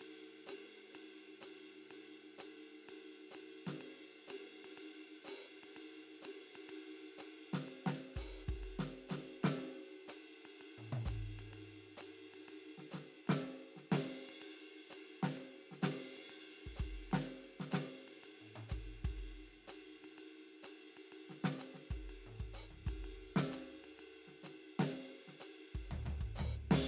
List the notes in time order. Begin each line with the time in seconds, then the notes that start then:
0.01 ride
0.47 hi-hat pedal, ride
0.91 hi-hat pedal, ride
1.41 hi-hat pedal, ride
1.91 ride
2.38 hi-hat pedal, ride
2.85 hi-hat pedal
2.89 ride
3.31 hi-hat pedal, ride
3.67 snare, ride
3.81 ride
4.28 hi-hat pedal, ride
4.64 ride
4.78 ride
5.24 hi-hat pedal, ride
5.63 ride
5.76 ride
6.22 hi-hat pedal, ride
6.55 ride
6.69 ride
7.18 hi-hat pedal, ride
7.53 snare, ride
7.68 ride
7.86 snare
8.16 kick, hi-hat pedal, ride
8.48 kick, ride
8.63 hi-hat pedal, ride
8.79 snare
9.09 snare, hi-hat pedal, ride
9.43 snare, ride
9.54 hi-hat pedal
9.59 ride
10.08 hi-hat pedal, ride
10.45 ride
10.61 ride
10.78 high tom
10.92 high tom
11.05 kick, hi-hat pedal, ride
11.39 ride
11.51 hi-hat pedal, ride
11.97 hi-hat pedal, ride
12.34 ride
12.41 hi-hat pedal
12.48 ride
12.78 snare
12.91 snare, hi-hat pedal, ride
13.27 snare, ride
13.38 hi-hat pedal, ride
13.76 snare
13.92 snare, hi-hat pedal, ride
14.29 ride
14.39 hi-hat pedal, ride
14.90 hi-hat pedal, ride
15.23 snare, ride
15.37 hi-hat pedal, ride
15.71 snare
15.82 snare, hi-hat pedal, ride
16.17 ride
16.27 hi-hat pedal, ride
16.66 kick
16.76 kick, hi-hat pedal, ride
17.11 snare, ride
17.22 hi-hat pedal
17.27 ride
17.60 snare
17.71 snare, hi-hat pedal, ride
18.08 ride
18.17 hi-hat pedal
18.23 ride
18.41 high tom
18.56 high tom
18.69 kick, hi-hat pedal, ride
19.04 kick, ride
19.18 ride
19.67 hi-hat pedal, ride
20.04 ride
20.14 hi-hat pedal, ride
20.63 hi-hat pedal, ride
20.97 ride
21.12 ride
21.29 snare
21.44 snare
21.58 hi-hat pedal, ride
21.74 snare
21.90 kick, ride
22.09 ride
22.26 high tom
22.40 kick
22.54 hi-hat pedal, ride
22.71 floor tom
22.86 kick, ride
23.01 hi-hat pedal, ride
23.36 snare
23.51 hi-hat pedal, ride
23.84 ride
23.96 hi-hat pedal, ride
24.27 snare
24.43 snare, hi-hat pedal, ride
24.79 snare, ride
24.90 hi-hat pedal, ride
25.28 snare
25.40 hi-hat pedal, ride
25.75 kick
25.85 hi-hat pedal
25.91 floor tom, high tom
26.05 floor tom, high tom
26.21 kick
26.35 floor tom, hi-hat pedal, high tom
26.71 snare, ride
26.81 hi-hat pedal